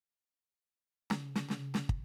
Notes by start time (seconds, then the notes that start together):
1.10 snare, high tom
1.36 snare, high tom
1.49 snare, high tom
1.74 snare, high tom
1.89 kick